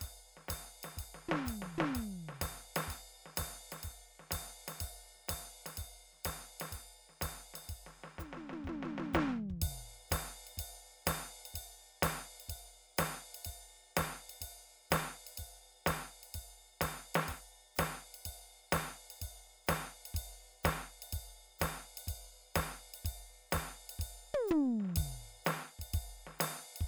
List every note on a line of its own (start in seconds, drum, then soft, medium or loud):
0.01 kick soft
0.01 ride medium
0.37 snare soft
0.48 kick soft
0.48 snare soft
0.48 hi-hat pedal medium
0.48 ride loud
0.83 snare soft
0.83 ride medium
0.97 kick soft
0.97 ride medium
1.14 snare soft
1.28 snare medium
1.28 floor tom medium
1.46 kick soft
1.46 hi-hat pedal medium
1.46 ride medium
1.62 snare soft
1.77 snare medium
1.77 floor tom medium
1.93 kick soft
1.93 hi-hat pedal soft
1.93 ride medium
2.29 snare soft
2.41 kick soft
2.41 snare medium
2.41 hi-hat pedal medium
2.41 ride loud
2.76 snare medium
2.76 ride loud
2.86 kick soft
2.86 hi-hat pedal soft
2.86 ride medium
3.26 snare soft
3.36 kick soft
3.36 snare soft
3.36 hi-hat pedal medium
3.36 ride loud
3.72 snare soft
3.72 ride medium
3.81 kick soft
3.81 hi-hat pedal soft
3.81 ride medium
4.19 snare soft
4.31 kick soft
4.31 snare soft
4.31 hi-hat pedal medium
4.31 ride loud
4.68 snare soft
4.68 ride medium
4.80 kick soft
4.80 ride medium
5.15 snare soft
5.28 kick soft
5.28 snare soft
5.28 hi-hat pedal medium
5.28 ride loud
5.66 snare soft
5.66 ride medium
5.77 kick soft
5.77 ride medium
6.13 snare soft
6.24 kick soft
6.24 snare medium
6.24 hi-hat pedal loud
6.24 ride loud
6.60 snare soft
6.60 ride medium
6.72 kick soft
6.72 hi-hat pedal soft
6.72 ride medium
7.09 snare soft
7.21 kick soft
7.21 snare medium
7.21 hi-hat pedal medium
7.21 ride loud
7.54 snare soft
7.54 ride medium
7.67 kick soft
7.67 hi-hat pedal soft
7.67 ride medium
7.86 snare soft
8.04 snare soft
8.18 kick soft
8.18 snare soft
8.18 floor tom soft
8.18 hi-hat pedal medium
8.33 snare soft
8.33 floor tom soft
8.49 snare soft
8.49 floor tom soft
8.64 kick soft
8.64 snare soft
8.64 hi-hat pedal soft
8.68 floor tom medium
8.83 snare soft
8.83 floor tom medium
8.98 snare soft
8.98 floor tom medium
9.13 kick soft
9.13 snare medium
9.13 floor tom medium
9.13 hi-hat pedal loud
9.50 kick soft
9.62 kick soft
9.62 ride loud
10.09 kick soft
10.09 snare medium
10.09 hi-hat pedal medium
10.09 ride loud
10.47 ride soft
10.57 kick soft
10.57 ride medium
11.06 kick soft
11.06 snare medium
11.06 hi-hat pedal loud
11.06 ride loud
11.45 ride medium
11.54 kick soft
11.54 ride medium
12.02 kick soft
12.02 snare loud
12.02 hi-hat pedal loud
12.02 ride loud
12.40 ride soft
12.49 kick soft
12.49 ride medium
12.97 kick soft
12.97 snare medium
12.97 hi-hat pedal medium
12.97 ride loud
13.34 ride medium
13.45 kick soft
13.45 ride medium
13.96 kick soft
13.96 snare medium
13.96 hi-hat pedal medium
13.96 ride loud
14.29 ride medium
14.41 kick soft
14.41 ride medium
14.90 kick soft
14.90 snare loud
14.90 hi-hat pedal loud
14.90 ride loud
15.27 ride medium
15.37 kick soft
15.37 ride medium
15.86 kick soft
15.86 snare medium
15.86 hi-hat pedal medium
15.86 ride loud
16.23 ride soft
16.34 kick soft
16.34 ride medium
16.81 kick soft
16.81 snare medium
16.81 hi-hat pedal medium
16.81 ride loud
17.14 snare loud
17.14 ride medium
17.28 kick soft
17.28 ride medium
17.76 kick soft
17.76 snare medium
17.76 hi-hat pedal loud
17.76 ride loud
18.14 ride medium
18.25 kick soft
18.25 ride medium
18.72 kick soft
18.72 snare loud
18.72 hi-hat pedal loud
18.72 ride loud
19.10 ride medium
19.19 kick soft
19.19 hi-hat pedal soft
19.19 ride medium
19.67 kick soft
19.67 snare medium
19.67 hi-hat pedal loud
19.67 ride loud
20.05 ride medium
20.14 kick soft
20.14 hi-hat pedal soft
20.14 ride medium
20.63 kick soft
20.63 snare loud
20.63 hi-hat pedal loud
20.63 ride loud
21.02 ride medium
21.08 hi-hat pedal soft
21.12 kick soft
21.12 ride medium
21.59 kick soft
21.59 snare medium
21.59 hi-hat pedal medium
21.59 ride loud
21.97 ride medium
22.07 kick soft
22.07 ride medium
22.55 kick soft
22.55 snare medium
22.55 hi-hat pedal medium
22.55 ride loud
22.94 ride medium
23.05 kick soft
23.05 ride medium
23.51 kick soft
23.51 snare medium
23.51 hi-hat pedal medium
23.51 ride loud
23.89 ride medium
23.99 kick soft
23.99 ride medium
24.34 high tom loud
24.48 floor tom loud
24.48 hi-hat pedal loud
24.80 snare soft
24.85 snare soft
24.89 snare soft
24.96 kick medium
24.96 ride loud
25.45 snare medium
25.45 hi-hat pedal loud
25.45 ride medium
25.79 kick soft
25.79 ride medium
25.94 kick soft
25.94 ride medium
26.27 snare soft
26.39 snare medium
26.39 hi-hat pedal medium
26.39 ride loud
26.76 ride medium
26.81 kick soft